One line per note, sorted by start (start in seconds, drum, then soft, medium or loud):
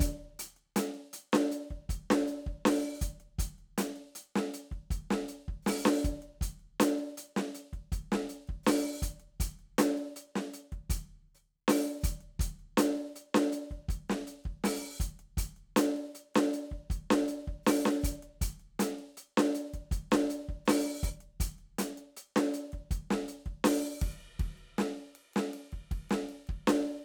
0.00 closed hi-hat loud
0.00 kick medium
0.39 closed hi-hat loud
0.57 closed hi-hat soft
0.76 closed hi-hat loud
0.76 snare loud
0.94 closed hi-hat soft
1.13 closed hi-hat loud
1.33 snare loud
1.33 closed hi-hat soft
1.52 closed hi-hat medium
1.70 kick soft
1.70 closed hi-hat soft
1.89 closed hi-hat medium
1.89 kick medium
2.10 closed hi-hat soft
2.10 snare loud
2.28 closed hi-hat medium
2.46 kick medium
2.46 closed hi-hat soft
2.65 open hi-hat loud
2.65 snare loud
3.01 closed hi-hat loud
3.01 kick medium
3.01 hi-hat pedal medium
3.20 closed hi-hat soft
3.39 closed hi-hat loud
3.39 kick medium
3.58 closed hi-hat soft
3.78 closed hi-hat loud
3.78 snare loud
3.96 closed hi-hat soft
4.15 closed hi-hat medium
4.36 snare loud
4.36 closed hi-hat soft
4.54 closed hi-hat medium
4.72 kick soft
4.72 closed hi-hat soft
4.91 closed hi-hat medium
4.91 kick medium
5.11 snare loud
5.28 closed hi-hat medium
5.48 kick medium
5.48 closed hi-hat soft
5.63 snare loud
5.63 hi-hat pedal soft
5.68 open hi-hat loud
5.85 snare loud
6.03 closed hi-hat medium
6.03 kick medium
6.03 hi-hat pedal medium
6.22 closed hi-hat soft
6.41 closed hi-hat loud
6.41 kick medium
6.60 closed hi-hat soft
6.80 closed hi-hat loud
6.80 snare loud
6.99 closed hi-hat soft
7.18 closed hi-hat medium
7.37 snare loud
7.37 closed hi-hat soft
7.55 closed hi-hat medium
7.73 kick soft
7.73 closed hi-hat soft
7.92 closed hi-hat medium
7.92 kick medium
8.12 snare loud
8.12 closed hi-hat soft
8.29 closed hi-hat medium
8.48 kick medium
8.48 closed hi-hat soft
8.63 open hi-hat loud
8.63 snare loud
8.63 hi-hat pedal soft
9.01 closed hi-hat loud
9.01 kick medium
9.01 hi-hat pedal medium
9.20 closed hi-hat soft
9.40 closed hi-hat loud
9.40 kick medium
9.59 closed hi-hat soft
9.78 closed hi-hat loud
9.78 snare loud
9.98 closed hi-hat soft
10.16 closed hi-hat medium
10.36 snare loud
10.36 closed hi-hat soft
10.54 closed hi-hat medium
10.72 kick soft
10.72 closed hi-hat soft
10.90 closed hi-hat loud
10.90 kick medium
11.35 hi-hat pedal soft
11.68 open hi-hat loud
11.68 snare loud
12.01 closed hi-hat loud
12.01 kick medium
12.01 hi-hat pedal medium
12.21 closed hi-hat soft
12.40 closed hi-hat loud
12.40 kick medium
12.59 closed hi-hat soft
12.78 closed hi-hat loud
12.78 snare loud
12.97 closed hi-hat soft
13.16 closed hi-hat medium
13.35 snare loud
13.35 closed hi-hat soft
13.53 closed hi-hat medium
13.71 kick soft
13.71 closed hi-hat soft
13.89 closed hi-hat medium
13.89 kick medium
14.09 snare loud
14.09 closed hi-hat soft
14.27 closed hi-hat medium
14.44 kick medium
14.44 closed hi-hat soft
14.64 open hi-hat loud
14.64 snare loud
15.00 closed hi-hat loud
15.00 kick medium
15.00 hi-hat pedal medium
15.19 closed hi-hat soft
15.37 closed hi-hat loud
15.37 kick medium
15.56 closed hi-hat soft
15.76 closed hi-hat loud
15.76 snare loud
15.96 closed hi-hat soft
16.15 closed hi-hat medium
16.35 snare loud
16.35 closed hi-hat soft
16.53 closed hi-hat medium
16.71 kick soft
16.71 closed hi-hat soft
16.90 closed hi-hat medium
16.90 kick medium
17.10 snare loud
17.10 closed hi-hat soft
17.28 closed hi-hat medium
17.47 kick medium
17.47 closed hi-hat soft
17.63 open hi-hat loud
17.63 snare loud
17.63 hi-hat pedal soft
17.86 snare loud
18.01 closed hi-hat loud
18.01 kick medium
18.01 hi-hat pedal medium
18.23 closed hi-hat soft
18.41 closed hi-hat loud
18.41 kick medium
18.60 closed hi-hat soft
18.80 closed hi-hat loud
18.80 snare loud
18.99 closed hi-hat soft
19.17 closed hi-hat medium
19.38 snare loud
19.55 closed hi-hat medium
19.74 kick soft
19.74 closed hi-hat medium
19.91 closed hi-hat medium
19.91 kick medium
20.12 snare loud
20.12 closed hi-hat medium
20.30 closed hi-hat medium
20.49 kick medium
20.49 closed hi-hat soft
20.65 open hi-hat loud
20.65 snare loud
20.65 hi-hat pedal soft
21.03 open hi-hat loud
21.03 kick medium
21.03 hi-hat pedal medium
21.21 closed hi-hat soft
21.40 closed hi-hat loud
21.40 kick medium
21.58 closed hi-hat soft
21.79 closed hi-hat loud
21.79 snare loud
21.98 closed hi-hat medium
22.17 closed hi-hat medium
22.36 snare loud
22.36 closed hi-hat soft
22.54 closed hi-hat medium
22.72 kick soft
22.72 closed hi-hat soft
22.91 closed hi-hat medium
22.91 kick medium
23.11 snare loud
23.11 closed hi-hat soft
23.28 closed hi-hat medium
23.46 kick medium
23.46 closed hi-hat soft
23.64 open hi-hat loud
23.64 snare loud
24.02 kick medium
24.02 ride loud
24.10 hi-hat pedal soft
24.21 ride soft
24.40 kick medium
24.40 ride medium
24.58 ride soft
24.78 snare loud
24.78 ride medium
25.15 ride medium
25.34 snare loud
25.34 ride soft
25.54 ride medium
25.72 kick soft
25.72 ride soft
25.91 kick medium
25.91 ride medium
26.10 snare loud
26.10 ride soft
26.29 ride soft
26.47 kick medium
26.47 ride soft
26.68 snare loud
26.68 ride medium